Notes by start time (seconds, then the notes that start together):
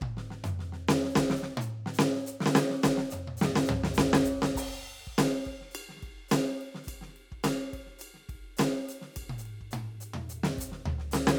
0.01 kick, high tom
0.08 kick
0.11 kick
0.17 snare
0.30 snare
0.44 hi-hat pedal, mid tom
0.59 snare
0.72 snare
0.88 snare, hi-hat pedal
1.04 snare
1.10 hi-hat pedal
1.15 kick, snare
1.30 snare
1.36 hi-hat pedal
1.42 snare
1.57 hi-hat pedal, high tom
1.86 snare
1.94 hi-hat pedal
1.99 snare
2.15 snare
2.26 hi-hat pedal
2.31 kick
2.40 snare
2.46 snare
2.55 snare, hi-hat pedal
2.70 snare
2.83 kick, snare, hi-hat pedal
2.97 snare
3.10 hi-hat pedal, mid tom
3.27 high tom
3.37 hi-hat pedal
3.41 snare
3.55 snare
3.65 hi-hat pedal, floor tom
3.83 snare
3.94 kick, snare, hi-hat pedal
4.13 snare
4.24 kick, hi-hat pedal
4.30 kick
4.42 snare
4.47 cross-stick
4.55 kick, hi-hat pedal, crash
5.07 kick
5.18 snare, ride bell
5.25 snare
5.45 kick, ride
5.60 snare
5.71 hi-hat pedal, ride bell
5.89 snare
5.97 snare
6.02 kick, ride
6.08 kick
6.28 snare, hi-hat pedal, ride bell
6.61 ride
6.74 snare
6.84 kick, hi-hat pedal
6.88 ride bell
6.93 kick
7.01 snare
7.07 snare
7.16 ride
7.32 kick
7.43 snare, hi-hat pedal, ride bell
7.73 kick, ride
7.86 snare
7.99 hi-hat pedal, ride bell
8.14 snare
8.20 snare
8.29 kick, ride
8.35 kick
8.57 snare, hi-hat pedal, ride bell
8.89 hi-hat pedal, ride
9.01 snare
9.12 hi-hat pedal
9.16 kick, ride bell
9.22 kick
9.26 kick, high tom
9.31 open hi-hat
9.38 hi-hat pedal
9.45 ride
9.61 kick
9.71 hi-hat pedal, high tom, ride
10.00 hi-hat pedal, ride
10.13 mid tom
10.29 hi-hat pedal, ride
10.43 snare
10.58 kick, hi-hat pedal, ride
10.64 kick
10.67 kick
10.72 snare
10.85 floor tom
10.98 snare
11.11 snare, hi-hat pedal
11.27 snare
11.34 snare